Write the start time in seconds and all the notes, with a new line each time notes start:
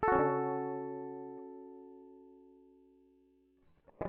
0.04 A4
0.09 F#4
0.13 C#4
0.21 D3
0.32 C#3
3.88 C#4